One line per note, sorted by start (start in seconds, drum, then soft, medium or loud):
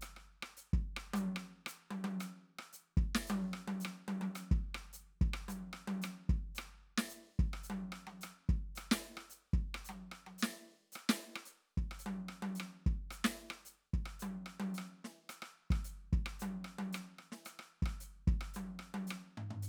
0.01 cross-stick medium
0.01 hi-hat pedal medium
0.16 cross-stick soft
0.43 cross-stick medium
0.57 hi-hat pedal medium
0.73 kick medium
0.97 cross-stick medium
1.14 hi-hat pedal medium
1.14 high tom loud
1.36 cross-stick medium
1.66 cross-stick medium
1.66 hi-hat pedal medium
1.91 high tom medium
2.04 high tom loud
2.20 cross-stick medium
2.20 hi-hat pedal medium
2.59 cross-stick medium
2.73 hi-hat pedal medium
2.97 kick medium
3.15 snare medium
3.27 hi-hat pedal medium
3.27 high tom loud
3.53 cross-stick medium
3.68 high tom loud
3.80 hi-hat pedal medium
3.85 cross-stick medium
4.08 high tom loud
4.21 high tom medium
4.35 cross-stick medium
4.35 hi-hat pedal medium
4.51 kick medium
4.75 cross-stick medium
4.93 hi-hat pedal medium
5.21 kick medium
5.34 cross-stick medium
5.48 hi-hat pedal medium
5.48 high tom medium
5.73 cross-stick medium
5.88 high tom loud
6.02 cross-stick medium
6.02 hi-hat pedal medium
6.29 kick medium
6.55 cross-stick medium
6.55 hi-hat pedal medium
6.98 snare medium
7.09 hi-hat pedal medium
7.39 kick medium
7.53 cross-stick medium
7.64 hi-hat pedal medium
7.70 high tom medium
7.92 cross-stick medium
8.07 high tom medium
8.21 cross-stick medium
8.21 hi-hat pedal medium
8.49 kick medium
8.75 cross-stick medium
8.75 hi-hat pedal medium
8.91 snare loud
9.17 cross-stick medium
9.30 hi-hat pedal medium
9.53 kick medium
9.74 cross-stick medium
9.85 hi-hat pedal medium
9.89 high tom medium
10.12 cross-stick medium
10.26 high tom soft
10.38 hi-hat pedal medium
10.43 snare medium
10.92 cross-stick medium
10.92 hi-hat pedal medium
11.09 snare loud
11.36 cross-stick medium
11.45 hi-hat pedal medium
11.77 kick medium
11.91 cross-stick medium
11.99 hi-hat pedal medium
12.06 high tom medium
12.29 cross-stick medium
12.42 high tom medium
12.55 hi-hat pedal medium
12.60 cross-stick medium
12.86 kick medium
13.11 cross-stick medium
13.11 hi-hat pedal medium
13.24 snare loud
13.50 cross-stick medium
13.65 hi-hat pedal medium
13.94 kick medium
14.06 cross-stick medium
14.20 hi-hat pedal medium
14.20 high tom medium
14.46 cross-stick medium
14.60 high tom loud
14.74 cross-stick medium
14.74 hi-hat pedal medium
15.04 snare soft
15.29 cross-stick medium
15.29 hi-hat pedal medium
15.42 cross-stick medium
15.70 kick medium
15.70 cross-stick medium
15.84 hi-hat pedal medium
16.13 kick medium
16.26 cross-stick medium
16.40 hi-hat pedal medium
16.40 high tom medium
16.65 cross-stick medium
16.79 high tom medium
16.93 cross-stick medium
16.93 hi-hat pedal medium
17.19 cross-stick medium
17.32 snare soft
17.45 cross-stick medium
17.45 hi-hat pedal medium
17.59 cross-stick medium
17.82 kick medium
17.82 cross-stick medium
18.00 hi-hat pedal medium
18.27 kick medium
18.41 cross-stick medium
18.54 hi-hat pedal medium
18.54 high tom medium
18.79 cross-stick medium
18.94 high tom medium
19.07 cross-stick medium
19.07 hi-hat pedal medium
19.37 floor tom medium
19.51 floor tom medium
19.62 hi-hat pedal medium